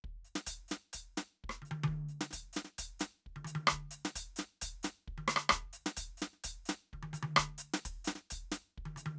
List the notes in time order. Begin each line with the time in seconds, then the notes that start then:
0.04 kick
0.24 hi-hat pedal
0.35 snare
0.46 closed hi-hat, kick
0.68 snare, hi-hat pedal
0.92 closed hi-hat, kick
1.17 snare, hi-hat pedal
1.43 kick
1.49 cross-stick
1.61 hi-hat pedal, high tom
1.70 high tom
1.83 high tom
1.87 kick
2.08 hi-hat pedal
2.20 snare
2.30 closed hi-hat, kick, snare
2.52 snare, hi-hat pedal
2.64 snare
2.78 closed hi-hat, kick
2.99 snare, hi-hat pedal
3.26 kick
3.35 high tom
3.44 hi-hat pedal, high tom
3.55 high tom
3.67 cross-stick
3.72 kick
3.90 hi-hat pedal
4.04 snare
4.15 closed hi-hat, kick
4.36 snare, hi-hat pedal
4.61 closed hi-hat, kick
4.82 snare, hi-hat pedal
5.07 kick
5.17 high tom
5.27 cross-stick, hi-hat pedal
5.36 cross-stick
5.49 kick, cross-stick
5.72 hi-hat pedal, high tom
5.86 snare
5.96 closed hi-hat, kick
6.17 hi-hat pedal
6.21 snare
6.32 snare
6.43 closed hi-hat, kick
6.65 snare, hi-hat pedal
6.93 kick, high tom
7.02 high tom
7.13 hi-hat pedal, high tom
7.22 high tom
7.36 kick, cross-stick
7.58 hi-hat pedal
7.73 snare
7.85 kick, closed hi-hat
8.04 snare, hi-hat pedal
8.15 snare
8.30 closed hi-hat, kick
8.51 snare, hi-hat pedal
8.77 kick
8.85 high tom
8.96 hi-hat pedal, high tom
9.05 high tom